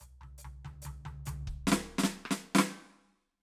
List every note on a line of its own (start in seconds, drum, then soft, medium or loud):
0.00 floor tom soft
0.00 hi-hat pedal soft
0.21 floor tom soft
0.21 high tom soft
0.38 hi-hat pedal medium
0.45 floor tom soft
0.45 high tom soft
0.65 floor tom medium
0.65 high tom medium
0.82 hi-hat pedal medium
0.82 high tom medium
0.86 floor tom medium
1.05 floor tom medium
1.05 high tom medium
1.26 floor tom medium
1.26 hi-hat pedal medium
1.26 high tom medium
1.47 kick soft
1.67 snare loud
1.72 snare loud
1.98 snare loud
1.98 hi-hat pedal soft
2.03 snare loud
2.25 cross-stick medium
2.31 snare loud
2.55 snare loud
2.58 snare loud